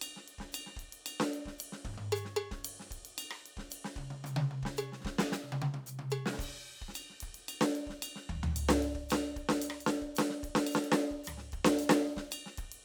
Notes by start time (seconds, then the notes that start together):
0.02 hi-hat pedal, ride bell
0.16 snare
0.28 ride
0.38 kick, snare
0.47 snare
0.52 hi-hat pedal, ride bell
0.66 snare
0.72 snare
0.76 kick, snare, ride
0.80 snare
0.93 ride
1.06 hi-hat pedal, ride bell
1.20 snare
1.34 ride
1.46 kick, snare
1.59 hi-hat pedal, ride
1.72 snare
1.84 kick, snare, mid tom
1.93 snare
1.97 snare, mid tom
2.00 snare
2.02 snare
2.12 hi-hat pedal, percussion
2.25 snare
2.37 percussion
2.51 kick, snare
2.64 hi-hat pedal, ride
2.80 snare
2.85 snare
2.91 kick, ride
3.02 snare, ride
3.18 hi-hat pedal, ride bell
3.31 cross-stick
3.46 ride
3.57 kick, snare
3.70 hi-hat pedal, ride
3.85 snare
3.96 kick, high tom
4.10 high tom
4.24 hi-hat pedal, high tom
4.36 high tom
4.51 high tom
4.63 kick, snare
4.77 hi-hat pedal, percussion
4.92 snare
5.01 snare
5.05 kick, snare
5.11 kick
5.19 snare
5.32 snare, hi-hat pedal
5.44 high tom
5.52 high tom
5.62 high tom
5.74 high tom
5.86 hi-hat pedal
5.99 open hi-hat, high tom
6.10 hi-hat pedal, percussion
6.26 snare
6.33 snare
6.39 kick, hi-hat pedal, crash
6.51 kick
6.82 kick
6.88 snare
6.95 hi-hat pedal, ride bell
7.10 snare
7.21 kick, ride
7.33 snare, ride
7.37 snare
7.49 hi-hat pedal, ride bell
7.61 snare
7.75 ride
7.87 kick, snare
8.02 hi-hat pedal, ride bell
8.16 snare
8.29 kick, floor tom
8.35 kick
8.43 floor tom
8.56 hi-hat pedal, ride bell
8.69 snare
8.82 ride
8.95 kick
9.09 snare, hi-hat pedal, ride bell
9.36 kick, ride
9.49 snare
9.62 hi-hat pedal, ride bell
9.70 cross-stick
9.81 ride bell
9.87 snare
10.02 kick
10.15 snare, hi-hat pedal, ride
10.30 snare
10.43 kick, ride
10.49 kick
10.55 snare
10.67 ride bell
10.71 hi-hat pedal
10.75 snare
10.84 ride
10.92 snare
11.11 kick
11.24 cross-stick, hi-hat pedal, ride, floor tom
11.38 snare
11.52 kick, ride
11.65 snare
11.79 hi-hat pedal, ride bell
11.89 snare
12.17 kick, snare
12.31 hi-hat pedal, ride bell
12.46 snare
12.58 kick, cross-stick, ride
12.65 kick
12.72 ride